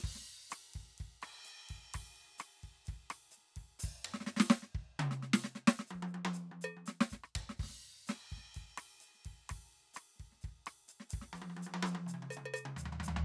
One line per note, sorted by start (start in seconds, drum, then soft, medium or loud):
0.01 kick soft
0.01 hi-hat pedal soft
0.01 crash medium
0.10 kick soft
0.15 snare soft
0.21 snare soft
0.50 cross-stick medium
0.50 hi-hat pedal medium
0.50 ride medium
0.74 kick soft
0.74 snare soft
0.74 ride soft
0.81 kick soft
0.81 snare soft
0.85 snare soft
0.90 snare soft
0.97 kick soft
0.97 hi-hat pedal soft
0.97 ride soft
1.05 kick soft
1.22 cross-stick medium
1.22 ride medium
1.45 hi-hat pedal medium
1.45 ride soft
1.69 kick soft
1.69 ride soft
1.75 kick soft
1.93 kick soft
1.93 cross-stick medium
1.93 hi-hat pedal soft
1.93 ride medium
2.00 kick soft
2.16 ride soft
2.38 cross-stick medium
2.38 hi-hat pedal medium
2.38 ride medium
2.63 kick soft
2.63 ride soft
2.85 kick soft
2.85 hi-hat pedal soft
2.85 ride soft
2.94 kick soft
3.10 cross-stick medium
3.10 ride medium
3.31 hi-hat pedal medium
3.31 ride soft
3.37 snare soft
3.56 kick soft
3.56 ride soft
3.79 hi-hat pedal loud
3.84 kick soft
3.90 kick soft
4.05 floor tom loud
4.14 snare medium
4.20 snare soft
4.27 snare medium
4.40 snare loud
4.50 snare loud
4.62 snare soft
4.75 kick soft
4.81 kick soft
4.99 mid tom loud
5.11 snare soft
5.23 snare soft
5.33 snare loud
5.44 snare medium
5.55 snare soft
5.67 snare loud
5.67 hi-hat pedal soft
5.79 snare soft
5.87 hi-hat pedal medium
5.87 high tom medium
5.94 kick soft
6.02 high tom medium
6.07 hi-hat pedal soft
6.14 high tom medium
6.25 high tom medium
6.33 hi-hat pedal medium
6.51 high tom soft
6.61 hi-hat pedal medium
6.61 percussion loud
6.77 high tom soft
6.86 snare soft
6.86 hi-hat pedal medium
7.01 snare loud
7.10 kick soft
7.10 snare soft
7.10 hi-hat pedal medium
7.24 cross-stick medium
7.35 kick soft
7.35 hi-hat pedal medium
7.35 floor tom loud
7.49 snare soft
7.57 kick soft
7.57 hi-hat pedal soft
7.57 crash medium
7.63 kick soft
7.63 snare soft
7.69 snare soft
7.73 snare soft
7.78 snare soft
8.07 snare medium
8.07 hi-hat pedal medium
8.07 ride medium
8.30 kick soft
8.30 ride soft
8.37 kick soft
8.37 snare soft
8.41 snare soft
8.45 snare soft
8.54 kick soft
8.54 hi-hat pedal soft
8.54 ride soft
8.62 kick soft
8.78 cross-stick medium
8.78 ride medium
9.00 hi-hat pedal medium
9.00 ride soft
9.14 snare soft
9.25 kick soft
9.25 ride soft
9.31 kick soft
9.49 kick soft
9.49 cross-stick medium
9.49 hi-hat pedal soft
9.49 ride medium
9.56 kick soft
9.73 ride soft
9.94 cross-stick medium
9.94 hi-hat pedal medium
9.94 ride medium
10.16 snare soft
10.20 kick soft
10.20 ride soft
10.32 snare soft
10.37 snare soft
10.41 kick soft
10.41 hi-hat pedal soft
10.41 ride soft
10.66 cross-stick medium
10.66 ride medium
10.88 hi-hat pedal medium
10.88 ride soft
11.00 snare soft
11.09 kick soft
11.09 hi-hat pedal medium
11.09 ride medium
11.22 snare soft
11.33 kick soft
11.33 hi-hat pedal soft
11.33 high tom soft
11.42 high tom medium
11.50 high tom soft
11.57 high tom medium
11.62 hi-hat pedal medium
11.67 high tom medium
11.74 high tom medium
11.83 hi-hat pedal medium
11.83 high tom loud
11.95 high tom medium
12.07 hi-hat pedal medium
12.07 mid tom soft
12.14 mid tom soft
12.22 mid tom medium
12.31 hi-hat pedal medium
12.31 percussion medium
12.37 mid tom medium
12.46 percussion medium
12.54 hi-hat pedal medium
12.54 percussion loud
12.65 mid tom medium
12.76 floor tom medium
12.76 hi-hat pedal medium
12.86 floor tom medium
12.92 floor tom medium
13.00 floor tom medium
13.00 hi-hat pedal loud
13.08 floor tom medium
13.16 floor tom medium